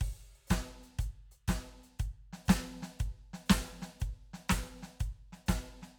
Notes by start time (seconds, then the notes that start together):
0.01 open hi-hat, kick
0.36 open hi-hat
0.47 closed hi-hat, kick, snare, hi-hat pedal
0.83 closed hi-hat
0.99 closed hi-hat, kick
1.31 closed hi-hat
1.48 closed hi-hat, kick, snare
1.83 closed hi-hat
1.99 closed hi-hat, kick
2.33 snare
2.46 closed hi-hat, kick, snare, hi-hat pedal
2.83 snare
2.99 closed hi-hat, kick
3.34 snare
3.46 closed hi-hat, snare, hi-hat pedal
3.51 kick
3.82 snare
4.00 closed hi-hat, kick
4.34 snare
4.49 closed hi-hat, kick, snare, hi-hat pedal
4.83 snare
5.00 closed hi-hat, kick
5.33 snare
5.46 closed hi-hat, kick, snare, hi-hat pedal
5.83 snare